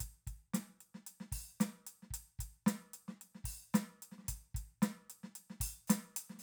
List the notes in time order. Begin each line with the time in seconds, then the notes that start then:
0.01 kick, closed hi-hat
0.27 kick, closed hi-hat
0.54 snare, closed hi-hat
0.81 closed hi-hat
0.95 snare
1.07 closed hi-hat
1.21 snare
1.32 kick, open hi-hat
1.61 snare, closed hi-hat, hi-hat pedal
1.87 closed hi-hat
2.03 snare
2.11 kick, closed hi-hat
2.40 kick, closed hi-hat
2.67 snare, closed hi-hat
2.94 closed hi-hat
3.09 snare
3.22 closed hi-hat
3.35 snare
3.45 kick, open hi-hat
3.74 snare, closed hi-hat, hi-hat pedal
4.03 closed hi-hat
4.12 snare
4.19 snare
4.25 snare
4.29 kick, snare, closed hi-hat
4.55 kick, closed hi-hat
4.83 snare, closed hi-hat
5.10 closed hi-hat
5.24 snare
5.36 closed hi-hat
5.50 snare
5.61 kick, open hi-hat
5.88 snare, closed hi-hat, hi-hat pedal
6.17 closed hi-hat
6.30 snare
6.35 snare
6.39 snare, hi-hat pedal